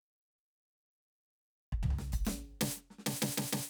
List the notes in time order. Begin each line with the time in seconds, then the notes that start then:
1.72 kick
1.83 floor tom
1.90 high tom
1.99 snare
2.12 closed hi-hat, kick
2.25 snare, hi-hat pedal
2.61 snare
2.74 snare, hi-hat pedal
2.90 snare
2.98 snare
3.06 snare
3.21 snare, hi-hat pedal
3.37 snare
3.52 snare